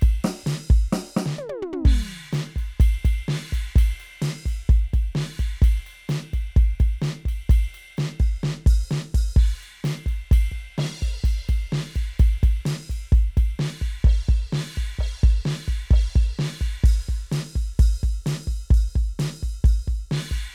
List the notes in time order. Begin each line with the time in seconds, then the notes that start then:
0.02 kick, ride
0.24 open hi-hat, snare
0.43 open hi-hat, kick, snare
0.70 kick
0.93 open hi-hat, snare
1.17 snare
1.26 snare
1.38 high tom
1.49 high tom
1.62 floor tom
1.72 floor tom
1.81 kick
1.85 kick, crash
2.33 snare, ride
2.56 kick, ride
2.80 kick, ride
3.05 kick, ride
3.28 snare, crash
3.53 kick, ride
3.76 kick, ride
4.00 ride
4.22 open hi-hat, snare
4.46 kick, ride
4.69 kick, ride
4.94 kick, ride
5.15 snare, crash
5.39 kick, ride
5.62 kick, ride
5.86 ride
6.08 snare, hi-hat pedal, ride
6.33 kick, ride
6.56 kick, ride
6.80 kick, ride
7.02 snare, ride
7.25 kick, ride
7.50 kick, ride
7.74 ride
7.98 snare, ride
8.20 open hi-hat, kick
8.43 snare
8.66 open hi-hat, kick
8.91 snare
9.14 open hi-hat, kick
9.36 kick, crash
9.63 ride
9.81 snare, hi-hat pedal
9.85 ride
10.06 kick, ride
10.31 kick, ride
10.52 kick
10.78 snare, crash
10.85 snare
11.02 kick, ride
11.24 kick, ride
11.45 snare, ride
11.49 kick
11.72 snare, crash
11.96 kick, ride
12.19 kick, ride
12.43 kick, ride
12.66 open hi-hat, snare
12.90 kick, ride
13.12 kick, ride
13.37 kick, ride
13.59 snare, crash
13.82 kick
14.04 kick, crash
14.29 kick
14.53 snare, crash
14.77 kick
14.99 kick, crash
15.23 kick
15.46 snare, crash
15.68 kick
15.91 kick, crash
16.16 kick
16.39 snare, crash
16.61 kick
16.78 kick
16.84 open hi-hat, kick
17.09 kick
17.32 open hi-hat, snare
17.56 kick
17.79 open hi-hat, kick
18.03 kick
18.26 open hi-hat, snare
18.47 kick
18.71 open hi-hat, kick
18.96 kick
19.19 open hi-hat, snare
19.43 kick
19.64 open hi-hat, kick
19.88 kick
20.11 snare, crash
20.31 kick